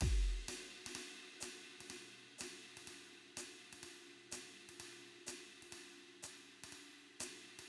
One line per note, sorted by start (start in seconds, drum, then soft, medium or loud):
0.00 kick soft
0.00 ride loud
0.00 crash medium
0.48 hi-hat pedal medium
0.48 ride loud
0.86 ride loud
0.95 ride loud
1.40 hi-hat pedal medium
1.40 ride loud
1.80 ride medium
1.86 hi-hat pedal soft
1.86 ride medium
2.38 hi-hat pedal medium
2.38 ride loud
2.77 ride medium
2.87 ride medium
3.37 hi-hat pedal loud
3.37 ride loud
3.73 ride medium
3.83 ride medium
4.31 hi-hat pedal medium
4.31 ride loud
4.69 ride medium
4.80 ride medium
5.26 hi-hat pedal medium
5.26 ride loud
5.62 ride medium
5.72 ride medium
6.23 hi-hat pedal medium
6.23 ride medium
6.63 ride medium
6.72 ride medium
7.20 hi-hat pedal loud
7.20 ride loud
7.59 ride medium